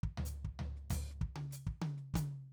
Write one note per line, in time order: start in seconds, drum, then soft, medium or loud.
0.03 kick soft
0.17 floor tom medium
0.25 hi-hat pedal medium
0.44 kick soft
0.59 floor tom medium
0.76 snare soft
0.90 kick soft
0.90 floor tom medium
0.90 hi-hat pedal medium
1.10 snare soft
1.21 kick soft
1.36 high tom medium
1.50 snare soft
1.50 hi-hat pedal medium
1.67 kick soft
1.82 high tom medium
1.97 snare soft
2.14 kick soft
2.14 hi-hat pedal medium
2.14 high tom medium